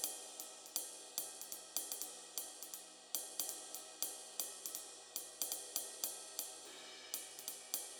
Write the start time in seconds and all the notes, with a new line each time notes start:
0.04 ride
0.40 ride
0.66 ride
1.18 ride
1.42 ride
1.52 ride
1.77 ride
1.92 ride
2.02 ride
2.38 ride
2.63 ride
2.74 ride
3.15 ride
3.40 ride
3.49 ride
3.75 ride
4.03 ride
4.40 ride
4.66 ride
4.75 ride
5.16 ride
5.42 ride
5.52 ride
5.76 ride
6.04 ride
6.39 ride
6.65 ride
6.75 ride
7.14 ride
7.39 ride
7.48 ride
7.74 ride